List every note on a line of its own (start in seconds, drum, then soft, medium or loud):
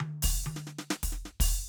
0.00 high tom loud
0.22 open hi-hat loud
0.22 kick medium
0.44 hi-hat pedal medium
0.44 high tom loud
0.56 snare soft
0.67 snare soft
0.79 snare medium
0.90 snare medium
1.03 kick medium
1.03 open hi-hat loud
1.09 snare soft
1.09 hi-hat pedal soft
1.18 kick soft
1.25 snare soft
1.40 open hi-hat loud
1.40 kick medium